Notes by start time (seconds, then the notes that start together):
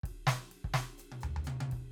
0.03 kick, ride
0.27 snare, ride
0.51 ride
0.64 kick
0.74 snare, ride
0.98 hi-hat pedal, ride
1.12 high tom
1.21 floor tom, hi-hat pedal
1.36 floor tom
1.44 hi-hat pedal, high tom
1.60 high tom
1.71 kick, ride